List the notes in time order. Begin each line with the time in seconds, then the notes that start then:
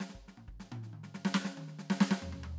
0.00 snare
0.09 snare
0.15 kick
0.28 snare
0.37 mid tom
0.48 kick
0.60 snare
0.72 mid tom
0.83 snare
0.93 high tom
1.03 snare
1.14 snare
1.25 snare
1.34 snare
1.44 snare
1.57 high tom
1.68 snare
1.79 snare
1.90 snare
2.00 snare
2.11 snare
2.22 floor tom
2.32 floor tom
2.43 floor tom